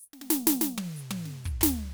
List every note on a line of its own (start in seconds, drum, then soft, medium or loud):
0.00 hi-hat pedal medium
0.13 snare soft
0.21 snare soft
0.30 snare loud
0.47 snare loud
0.47 hi-hat pedal medium
0.61 snare loud
0.78 high tom loud
0.96 hi-hat pedal medium
1.11 high tom loud
1.26 snare soft
1.44 kick medium
1.44 hi-hat pedal medium
1.61 snare loud
1.61 floor tom loud